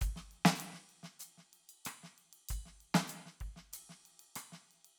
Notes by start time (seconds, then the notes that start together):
0.01 kick, hi-hat pedal, ride
0.16 snare
0.31 ride
0.45 snare
0.55 hi-hat pedal
0.60 ride
0.73 snare
0.89 ride
1.03 snare
1.19 hi-hat pedal, ride
1.37 snare
1.53 ride
1.69 ride bell
1.85 cross-stick, hi-hat pedal, ride bell
2.03 snare
2.18 ride
2.33 ride
2.49 kick, hi-hat pedal, ride bell
2.65 snare
2.80 ride
2.94 snare
3.07 hi-hat pedal, ride bell
3.26 snare
3.40 kick, ride
3.56 snare
3.73 hi-hat pedal, ride
3.89 snare
4.05 ride
4.19 ride
4.35 cross-stick, hi-hat pedal, ride bell
4.52 snare
4.71 ride
4.85 ride